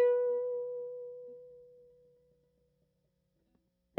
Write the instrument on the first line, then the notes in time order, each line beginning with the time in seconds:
electric guitar
0.00 B4